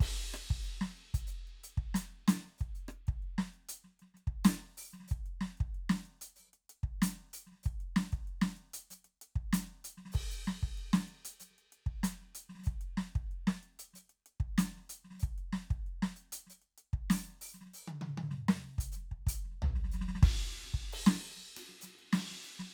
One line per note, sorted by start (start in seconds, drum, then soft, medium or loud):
0.01 kick medium
0.01 crash medium
0.01 ride loud
0.34 cross-stick medium
0.49 kick medium
0.49 closed hi-hat soft
0.63 closed hi-hat soft
0.63 hi-hat pedal soft
0.81 snare medium
0.97 closed hi-hat soft
1.14 closed hi-hat medium
1.14 kick medium
1.27 hi-hat pedal medium
1.47 closed hi-hat soft
1.64 closed hi-hat medium
1.78 kick medium
1.95 open hi-hat loud
1.95 snare loud
2.01 snare soft
2.28 open hi-hat loud
2.28 snare loud
2.44 snare soft
2.48 snare soft
2.58 kick medium
2.58 closed hi-hat soft
2.58 hi-hat pedal soft
2.75 closed hi-hat soft
2.89 cross-stick medium
3.07 kick medium
3.07 closed hi-hat soft
3.22 closed hi-hat soft
3.38 snare loud
3.54 closed hi-hat soft
3.69 closed hi-hat loud
3.84 snare soft
4.00 snare soft
4.00 closed hi-hat soft
4.14 snare soft
4.14 closed hi-hat soft
4.27 kick soft
4.45 open hi-hat loud
4.45 snare loud
4.49 cross-stick medium
4.53 snare soft
4.57 snare soft
4.60 snare soft
4.78 open hi-hat loud
4.93 snare soft
5.00 snare soft
5.04 snare soft
5.07 snare soft
5.07 closed hi-hat soft
5.07 hi-hat pedal medium
5.11 kick medium
5.26 closed hi-hat soft
5.41 snare medium
5.58 kick medium
5.58 closed hi-hat soft
5.75 closed hi-hat soft
5.90 snare medium
6.06 closed hi-hat soft
6.22 closed hi-hat medium
6.36 snare soft
6.36 hi-hat pedal soft
6.48 snare soft
6.54 closed hi-hat soft
6.70 closed hi-hat medium
6.83 kick soft
7.02 open hi-hat loud
7.02 snare medium
7.34 open hi-hat loud
7.47 snare soft
7.52 snare soft
7.55 snare soft
7.63 kick medium
7.63 snare soft
7.63 hi-hat pedal medium
7.81 closed hi-hat soft
7.96 snare loud
8.13 kick medium
8.13 closed hi-hat soft
8.27 closed hi-hat soft
8.42 snare medium
8.57 closed hi-hat soft
8.74 closed hi-hat loud
8.91 snare soft
8.91 hi-hat pedal medium
9.05 snare soft
9.05 closed hi-hat soft
9.22 closed hi-hat medium
9.36 kick medium
9.53 open hi-hat loud
9.53 snare medium
9.59 snare soft
9.85 open hi-hat loud
9.98 snare soft
10.06 snare soft
10.10 snare soft
10.10 hi-hat pedal medium
10.10 crash medium
10.15 kick medium
10.31 closed hi-hat medium
10.47 snare medium
10.62 kick medium
10.62 closed hi-hat soft
10.78 closed hi-hat soft
10.93 snare loud
11.08 closed hi-hat soft
11.25 closed hi-hat loud
11.40 snare soft
11.40 hi-hat pedal medium
11.51 snare soft
11.58 closed hi-hat soft
11.72 closed hi-hat soft
11.86 kick soft
12.04 open hi-hat loud
12.04 snare loud
12.21 snare soft
12.35 open hi-hat medium
12.49 snare soft
12.55 snare soft
12.59 snare soft
12.63 snare soft
12.63 closed hi-hat soft
12.63 hi-hat pedal soft
12.67 kick medium
12.67 snare soft
12.81 closed hi-hat soft
12.97 snare medium
13.16 kick medium
13.16 closed hi-hat soft
13.31 closed hi-hat soft
13.47 snare loud
13.63 closed hi-hat soft
13.79 open hi-hat medium
13.94 snare soft
13.94 hi-hat pedal medium
14.10 closed hi-hat soft
14.26 closed hi-hat soft
14.40 kick medium
14.58 open hi-hat loud
14.58 snare loud
14.77 snare soft
14.90 open hi-hat loud
15.05 snare soft
15.11 snare soft
15.14 snare soft
15.18 snare soft
15.18 hi-hat pedal medium
15.22 kick medium
15.22 snare soft
15.22 closed hi-hat soft
15.38 closed hi-hat soft
15.53 snare medium
15.71 kick medium
15.71 closed hi-hat soft
15.87 closed hi-hat soft
16.03 snare loud
16.16 closed hi-hat soft
16.32 closed hi-hat loud
16.47 snare soft
16.47 hi-hat pedal medium
16.62 closed hi-hat soft
16.78 closed hi-hat medium
16.93 kick medium
17.10 open hi-hat loud
17.10 snare loud
17.29 snare soft
17.42 open hi-hat loud
17.54 snare soft
17.61 snare soft
17.66 snare soft
17.74 hi-hat pedal medium
17.88 closed hi-hat soft
17.88 high tom loud
18.02 high tom loud
18.18 high tom loud
18.31 snare soft
18.49 snare loud
18.63 snare soft
18.78 open hi-hat medium
18.78 kick medium
18.92 snare soft
18.92 hi-hat pedal medium
19.12 kick soft
19.27 open hi-hat loud
19.27 kick medium
19.45 snare soft
19.51 snare soft
19.62 floor tom loud
19.75 snare soft
19.84 snare soft
19.89 snare soft
19.89 hi-hat pedal medium
19.94 snare soft
20.01 snare soft
20.08 snare soft
20.15 snare soft
20.23 kick loud
20.23 ride loud
20.74 kick medium
20.93 crash loud
21.07 snare loud
21.37 snare soft
21.57 hi-hat pedal medium
21.57 ride loud
21.69 snare soft
21.82 snare soft
21.82 hi-hat pedal medium
21.82 ride medium
21.99 ride soft
22.13 snare loud
22.13 ride loud
22.31 snare soft
22.43 hi-hat pedal soft
22.43 ride soft
22.59 snare medium